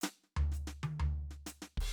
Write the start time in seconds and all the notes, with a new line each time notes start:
0.04 snare, hi-hat pedal
0.23 snare
0.36 floor tom
0.52 snare, hi-hat pedal
0.67 snare
0.83 closed hi-hat, high tom
0.99 floor tom
1.30 snare
1.46 snare, hi-hat pedal
1.62 snare
1.77 kick, crash